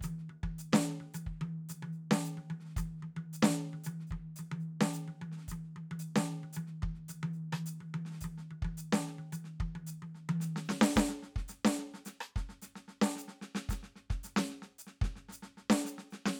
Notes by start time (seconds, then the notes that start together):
0.01 kick, hi-hat pedal, high tom
0.19 snare
0.29 high tom
0.43 kick, high tom
0.58 hi-hat pedal
0.73 snare, high tom
0.89 snare
0.94 snare
1.00 high tom
1.14 hi-hat pedal, high tom
1.26 kick
1.41 high tom
1.69 hi-hat pedal, high tom
1.82 high tom
1.93 hi-hat pedal
2.11 snare, high tom
2.25 hi-hat pedal
2.37 high tom
2.50 high tom
2.60 snare
2.64 snare
2.69 snare
2.76 kick, hi-hat pedal, high tom
2.98 snare
3.00 snare, high tom
3.16 high tom
3.33 hi-hat pedal
3.42 snare, high tom
3.73 high tom
3.84 hi-hat pedal, high tom
4.00 snare
4.07 kick, hi-hat pedal
4.12 high tom
4.36 hi-hat pedal, high tom
4.52 high tom
4.60 hi-hat pedal
4.81 snare, high tom
4.93 hi-hat pedal
5.08 high tom
5.21 high tom
5.32 snare
5.37 snare
5.40 snare
5.45 kick, snare, hi-hat pedal
5.52 high tom
5.64 snare
5.76 high tom
5.91 high tom
5.99 hi-hat pedal
6.16 snare, high tom
6.43 high tom
6.53 hi-hat pedal, high tom
6.67 snare
6.82 kick, high tom
6.95 snare
7.08 hi-hat pedal, high tom
7.23 high tom
7.33 hi-hat pedal
7.52 cross-stick, high tom
7.66 hi-hat pedal
7.80 high tom
7.94 high tom
8.05 snare
8.10 snare
8.12 snare
8.15 snare
8.21 kick, hi-hat pedal, high tom
8.38 snare
8.51 high tom
8.62 kick, high tom
8.77 hi-hat pedal
8.93 snare, high tom
9.07 snare
9.18 high tom
9.32 hi-hat pedal, high tom
9.44 snare
9.60 kick, high tom
9.75 high tom
9.87 snare, hi-hat pedal
10.02 high tom
10.15 snare
10.29 high tom
10.40 snare, hi-hat pedal
10.56 snare
10.65 snare, hi-hat pedal
10.81 snare
10.96 kick, snare, hi-hat pedal
11.09 snare
11.23 snare
11.36 kick, snare
11.48 snare, hi-hat pedal
11.65 snare
11.78 snare
11.94 snare
12.05 snare, hi-hat pedal
12.21 cross-stick
12.36 kick, snare
12.49 snare
12.62 snare, hi-hat pedal
12.76 snare
12.88 snare
13.02 snare
13.15 snare, hi-hat pedal
13.28 snare
13.41 snare
13.55 snare
13.69 kick, snare, hi-hat pedal
13.83 snare
13.96 snare
14.10 kick, snare
14.23 snare, hi-hat pedal
14.36 snare
14.50 snare
14.62 snare
14.79 hi-hat pedal
14.87 snare
15.01 kick, snare
15.16 snare
15.29 snare, hi-hat pedal
15.42 snare
15.57 snare
15.70 snare
15.84 snare, hi-hat pedal
15.98 snare
16.10 snare, hi-hat pedal
16.26 snare